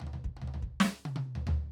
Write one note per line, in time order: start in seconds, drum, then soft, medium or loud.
0.00 floor tom medium
0.00 high tom medium
0.07 high tom medium
0.13 floor tom medium
0.24 kick medium
0.37 high tom medium
0.42 floor tom medium
0.47 high tom medium
0.54 floor tom medium
0.62 kick medium
0.80 snare loud
0.85 snare loud
1.05 high tom loud
1.16 high tom loud
1.35 floor tom medium
1.47 floor tom loud